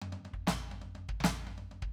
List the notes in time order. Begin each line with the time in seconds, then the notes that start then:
0.02 high tom
0.13 high tom
0.25 high tom
0.34 kick
0.47 snare, floor tom
0.72 high tom
0.82 high tom
0.95 high tom
1.09 kick
1.21 snare, floor tom
1.47 high tom
1.58 high tom
1.72 high tom
1.83 kick